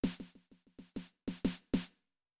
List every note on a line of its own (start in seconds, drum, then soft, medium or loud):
0.03 snare medium
0.03 hi-hat pedal soft
0.20 snare soft
0.35 snare soft
0.50 snare soft
0.50 hi-hat pedal soft
0.67 snare soft
0.79 snare soft
0.94 snare soft
0.94 hi-hat pedal soft
1.28 snare medium
1.45 snare medium
1.74 snare medium